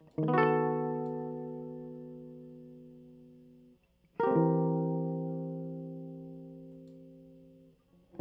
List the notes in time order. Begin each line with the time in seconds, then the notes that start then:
0.19 D#3
0.29 B3
0.34 F#4
0.38 A4
4.20 G4 A#4
4.28 C4
4.33 A3
4.37 E3